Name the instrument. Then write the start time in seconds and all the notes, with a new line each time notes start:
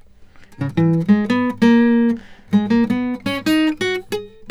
acoustic guitar
0.62 C#3
0.78 E3
1.09 G#3
1.30 B3
1.62 A#3
2.53 G#3
2.71 A#3
2.91 B3
3.26 C#4
3.47 D#4
3.81 F#4
4.12 G#4